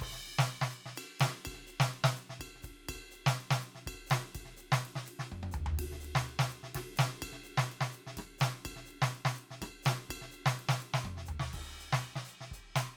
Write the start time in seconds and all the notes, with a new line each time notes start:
0.01 kick, crash
0.08 kick, snare
0.19 hi-hat pedal
0.26 ride
0.39 snare
0.45 hi-hat pedal
0.61 snare
0.70 hi-hat pedal, ride
0.86 snare
0.96 hi-hat pedal, ride bell
1.20 snare, ride
1.26 snare
1.45 kick, ride bell
1.54 snare
1.67 hi-hat pedal, ride
1.80 snare
1.89 hi-hat pedal
1.94 ride
2.04 snare
2.15 hi-hat pedal, ride
2.29 snare
2.40 kick, ride bell
2.55 snare
2.62 kick, hi-hat pedal, ride
2.89 kick, ride bell
2.95 kick
2.97 kick, snare
3.11 hi-hat pedal
3.15 ride
3.26 snare
3.40 ride
3.50 snare
3.60 hi-hat pedal, ride
3.75 snare
3.86 kick, ride bell
3.92 kick
3.95 kick
4.06 hi-hat pedal, ride
4.11 snare
4.19 snare
4.35 kick, ride bell
4.41 kick
4.45 snare
4.57 hi-hat pedal, ride
4.72 snare
4.85 ride
4.95 snare
5.05 hi-hat pedal, ride
5.19 snare
5.27 hi-hat pedal
5.32 kick, mid tom
5.37 kick
5.43 mid tom
5.51 floor tom, hi-hat pedal
5.66 floor tom
5.78 kick, ride
5.83 kick
5.86 kick
5.92 snare
6.00 hi-hat pedal
6.05 ride
6.15 snare
6.29 ride
6.39 snare
6.49 hi-hat pedal, ride
6.63 snare
6.75 kick, snare, ride
6.96 snare, hi-hat pedal, ride
7.22 kick, ride bell
7.32 snare
7.43 hi-hat pedal, ride
7.57 snare
7.71 ride bell
7.81 snare
7.91 hi-hat pedal, ride
8.07 snare
8.17 kick, cross-stick, ride bell
8.38 snare, hi-hat pedal, ride
8.65 kick, ride bell
8.73 kick, snare
8.86 hi-hat pedal
8.91 ride
9.02 snare
9.15 ride
9.25 snare
9.35 hi-hat pedal, ride
9.51 snare
9.61 kick, cross-stick, ride bell
9.83 snare, hi-hat pedal, ride
9.92 cross-stick
10.09 kick, ride bell
10.21 snare
10.31 hi-hat pedal, ride
10.46 snare
10.59 ride
10.69 snare
10.79 hi-hat pedal, ride
10.94 snare
11.04 kick, mid tom
11.17 snare
11.26 floor tom, hi-hat pedal
11.39 snare
11.53 kick, crash
11.60 kick
11.64 kick
11.80 closed hi-hat
11.93 snare
12.04 closed hi-hat
12.16 snare
12.24 closed hi-hat, hi-hat pedal
12.41 snare
12.51 closed hi-hat, kick
12.76 closed hi-hat, snare